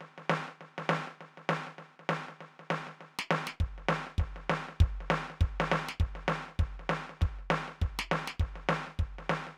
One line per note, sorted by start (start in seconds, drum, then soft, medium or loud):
0.01 snare soft
0.18 snare soft
0.30 snare loud
0.48 snare soft
0.61 snare soft
0.78 snare medium
0.90 snare loud
0.95 snare soft
1.08 snare soft
1.21 snare soft
1.38 snare soft
1.49 snare loud
1.67 snare soft
1.79 snare soft
2.00 snare soft
2.09 snare loud
2.29 snare soft
2.41 snare soft
2.60 snare soft
2.71 snare loud
2.87 snare soft
3.01 snare soft
3.19 snare loud
3.31 snare loud
3.47 snare medium
3.60 kick medium
3.60 snare soft
3.78 snare soft
3.89 snare loud
4.07 snare soft
4.18 kick medium
4.18 snare soft
4.36 snare soft
4.50 snare loud
4.69 snare soft
4.80 kick loud
4.80 snare soft
5.01 snare soft
5.10 snare loud
5.30 snare soft
5.41 kick medium
5.41 snare soft
5.60 snare loud
5.72 snare loud
5.89 snare medium
6.00 kick medium
6.00 snare soft
6.16 snare soft
6.28 snare loud
6.49 snare soft
6.59 kick medium
6.59 snare soft
6.80 snare soft
6.90 kick soft
6.90 snare loud
7.10 snare soft
7.21 kick medium
7.21 snare soft
7.39 snare soft
7.50 snare loud
7.68 snare soft
7.82 kick medium
7.82 snare soft
7.99 snare loud
8.12 snare loud
8.28 snare medium
8.40 kick medium
8.40 snare soft
8.56 snare soft
8.69 snare loud
8.87 snare soft
8.99 kick medium
8.99 snare soft
9.19 snare soft
9.30 snare loud
9.47 snare soft